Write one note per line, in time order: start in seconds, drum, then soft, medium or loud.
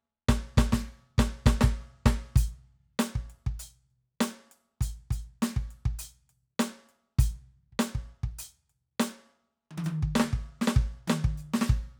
0.29 kick loud
0.29 snare loud
0.58 kick loud
0.58 snare loud
0.73 kick medium
0.73 snare loud
1.18 kick loud
1.18 snare loud
1.46 kick loud
1.46 snare loud
1.61 kick loud
1.61 snare loud
1.82 cross-stick soft
2.06 kick loud
2.06 snare loud
2.36 closed hi-hat loud
2.36 kick loud
2.99 closed hi-hat loud
2.99 snare loud
3.16 kick medium
3.30 closed hi-hat soft
3.47 kick medium
3.60 closed hi-hat loud
3.91 closed hi-hat soft
4.21 closed hi-hat loud
4.21 snare loud
4.51 closed hi-hat soft
4.81 closed hi-hat loud
4.81 kick medium
5.11 closed hi-hat medium
5.11 kick medium
5.42 closed hi-hat loud
5.42 snare loud
5.57 kick medium
5.71 closed hi-hat soft
5.86 kick medium
5.99 closed hi-hat loud
6.29 closed hi-hat soft
6.60 closed hi-hat loud
6.60 snare loud
6.89 closed hi-hat soft
7.19 closed hi-hat loud
7.19 kick loud
7.73 kick soft
7.79 closed hi-hat loud
7.79 snare loud
7.95 kick medium
8.24 kick medium
8.28 crash soft
8.39 closed hi-hat loud
8.70 closed hi-hat soft
9.00 closed hi-hat loud
9.00 snare loud
9.71 high tom medium
9.78 high tom loud
9.84 hi-hat pedal medium
9.84 high tom loud
10.03 kick medium
10.16 snare loud
10.16 hi-hat pedal soft
10.20 snare loud
10.33 kick medium
10.62 snare loud
10.68 snare loud
10.76 kick loud
11.08 snare loud
11.08 hi-hat pedal medium
11.08 high tom loud
11.24 kick loud
11.38 hi-hat pedal soft
11.54 snare loud
11.61 snare loud
11.70 kick loud